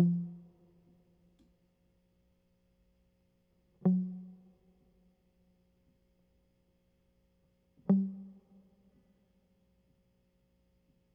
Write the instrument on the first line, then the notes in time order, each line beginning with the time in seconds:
electric guitar
0.00 F3
3.86 F#3
7.90 G3